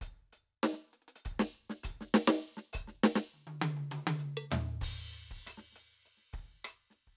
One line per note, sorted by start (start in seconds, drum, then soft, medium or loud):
0.01 closed hi-hat medium
0.01 kick soft
0.33 closed hi-hat soft
0.63 closed hi-hat loud
0.63 snare loud
0.73 snare soft
0.93 closed hi-hat medium
1.02 closed hi-hat soft
1.08 closed hi-hat medium
1.16 closed hi-hat medium
1.25 closed hi-hat medium
1.25 kick soft
1.32 kick soft
1.39 snare loud
1.55 closed hi-hat soft
1.70 snare medium
1.83 closed hi-hat loud
1.83 kick soft
1.91 kick soft
2.01 snare soft
2.14 snare loud
2.27 snare loud
2.57 snare soft
2.73 open hi-hat loud
2.73 kick soft
2.73 hi-hat pedal soft
2.81 kick soft
2.87 snare soft
3.03 snare loud
3.15 snare loud
3.34 high tom soft
3.47 high tom medium
3.59 hi-hat pedal soft
3.59 high tom loud
3.76 high tom soft
3.90 hi-hat pedal medium
3.90 high tom medium
4.07 high tom loud
4.18 hi-hat pedal medium
4.37 percussion loud
4.51 hi-hat pedal loud
4.51 floor tom loud
4.81 kick medium
4.81 hi-hat pedal loud
4.81 crash loud
5.13 cross-stick soft
5.31 kick soft
5.46 open hi-hat loud
5.46 cross-stick medium
5.57 snare soft
5.72 closed hi-hat medium
5.72 snare soft
6.05 open hi-hat soft
6.05 hi-hat pedal soft
6.17 snare soft
6.33 closed hi-hat soft
6.33 kick soft
6.64 open hi-hat medium
6.64 cross-stick medium
6.64 hi-hat pedal soft
6.90 snare soft
6.90 closed hi-hat soft
7.07 kick soft